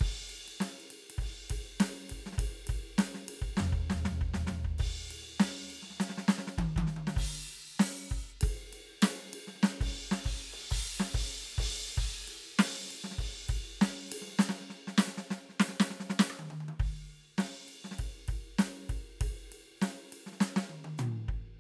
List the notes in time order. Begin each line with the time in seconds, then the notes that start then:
0.01 kick, ride
0.30 ride
0.49 ride
0.61 snare, ride
0.81 ride
0.91 ride
1.11 ride
1.19 kick, ride
1.51 kick, ride
1.81 snare, hi-hat pedal, ride
2.10 kick, ride
2.27 snare
2.33 snare
2.39 kick, ride
2.68 kick, ride
2.99 snare, hi-hat pedal, ride
3.15 snare
3.26 hi-hat pedal, ride
3.43 kick
3.58 snare, floor tom
3.73 kick
3.91 snare, floor tom
4.06 snare, floor tom
4.22 kick
4.34 snare, floor tom
4.48 snare, floor tom
4.65 kick
4.79 kick, ride
5.12 ride
5.40 snare, hi-hat pedal, ride
5.68 hi-hat pedal, ride
5.83 snare
5.91 snare
5.98 snare
6.01 snare, hi-hat pedal
6.10 snare
6.19 snare
6.29 snare
6.39 snare
6.48 snare
6.58 kick, high tom
6.77 kick, high tom
6.88 snare
6.97 high tom
7.08 snare
7.17 kick, crash
7.80 open hi-hat, snare
8.12 kick
8.42 kick, ride
8.74 ride
9.03 snare, ride
9.34 ride
9.48 snare
9.56 snare
9.64 snare
9.81 kick, ride
10.12 snare
10.25 kick, crash
10.54 ride
10.71 kick, crash
11.01 snare
11.15 kick, ride
11.43 crash
11.59 kick, ride
11.98 kick, crash
12.04 closed hi-hat
12.29 ride
12.60 snare, ride
12.86 hi-hat pedal
12.92 ride
13.05 snare
13.12 snare
13.19 kick, ride
13.50 kick, ride
13.79 snare, hi-hat pedal, ride
14.08 hi-hat pedal
14.13 ride
14.22 snare
14.28 snare
14.33 snare
14.40 snare, hi-hat pedal
14.50 snare
14.62 snare
14.71 snare
14.88 snare
14.99 snare, hi-hat pedal
15.08 snare
15.18 snare
15.31 snare
15.50 snare
15.61 snare
15.69 snare
15.81 snare
15.91 snare
16.01 snare
16.11 snare
16.20 snare
16.31 cross-stick
16.40 high tom
16.51 high tom
16.61 high tom
16.69 high tom
16.80 kick, crash
17.39 snare, ride
17.69 ride
17.85 snare
17.92 snare
18.00 kick, ride
18.29 kick, ride
18.59 snare, ride
18.90 kick, ride
19.21 kick, ride
19.53 ride
19.78 hi-hat pedal
19.82 snare, ride
20.09 hi-hat pedal
20.13 ride
20.27 snare
20.33 snare
20.41 snare, hi-hat pedal
20.57 snare
20.70 high tom
20.85 high tom
20.99 hi-hat pedal, mid tom
21.29 kick